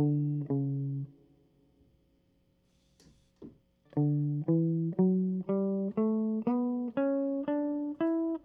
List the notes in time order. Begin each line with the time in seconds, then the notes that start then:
0.00 D3
0.52 C#3
3.99 D3
4.50 E3
5.00 F#3
5.51 G3
5.99 A3
6.48 A#3
6.53 B3
6.98 C#4
7.49 D4
8.01 E4